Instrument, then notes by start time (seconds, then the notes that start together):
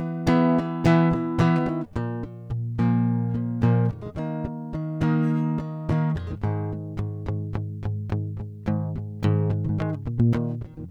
acoustic guitar
0.00 E3 B3
0.28 E3 B3 E4 G#4
0.60 E3 B3
0.86 E3 B3 E4
1.12 E3 B3 E4
1.41 E3 B3 E4
1.68 D#3 B3
1.98 A#2
2.25 A#2
2.52 A#2
2.81 A#2 F3 A#3
3.36 A#2 F3
3.64 A#2 F3 A#3
3.91 A#2
4.18 D#3 A#3
4.47 D#3 A#3
4.75 D#3 B3
5.03 D#3 A#3 D#4
5.60 D#3 A#3
5.92 D#3 A#3 D#4
6.19 A#2
6.45 G#2 D#3
6.75 G#2
6.99 G#2 D#3
7.28 G#2 D#3
7.55 G#2 D#3
7.84 G#2 E3 G#3
8.11 G#2 D#3
8.38 G#2 D#3
8.68 G#2 D#3
8.97 G#2 D#3
9.24 G#2 D#3
9.52 G#2 D#3
9.66 D#3
9.71 G#2
9.81 D#3 G#3
10.07 A#2
10.21 A#2
10.35 A#2
10.64 D#3
10.80 D#3